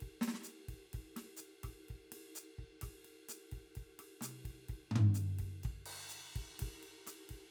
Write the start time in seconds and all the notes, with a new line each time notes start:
0.01 kick, ride
0.07 kick
0.22 snare, ride
0.28 snare
0.34 snare
0.41 snare, hi-hat pedal
0.45 snare, ride
0.53 snare
0.59 snare
0.63 snare
0.69 kick, ride
0.74 kick
0.94 kick, ride
1.00 kick
1.17 snare, ride
1.37 hi-hat pedal, ride
1.63 kick, cross-stick, snare, ride
1.70 kick
1.89 kick, ride
1.96 kick
2.12 snare, ride
2.36 hi-hat pedal
2.59 kick
2.64 kick
2.82 kick, cross-stick, snare, hi-hat pedal, ride
2.88 kick
3.05 ride
3.29 snare, hi-hat pedal, ride
3.52 kick, ride
3.58 kick
3.75 kick, hi-hat pedal, ride
3.82 kick
3.99 cross-stick, snare, ride
4.21 cross-stick, snare, hi-hat pedal, mid tom, ride
4.45 kick, ride
4.50 kick
4.69 kick, ride
4.92 floor tom
4.96 floor tom
5.15 hi-hat pedal, ride
5.39 kick, ride
5.45 kick
5.64 kick, ride bell
5.72 kick
5.86 crash
6.09 hi-hat pedal, ride bell
6.36 kick, ride
6.42 kick
6.59 kick, snare, hi-hat pedal, ride
6.68 kick
6.83 ride
7.06 cross-stick, snare, hi-hat pedal, ride
7.30 kick, ride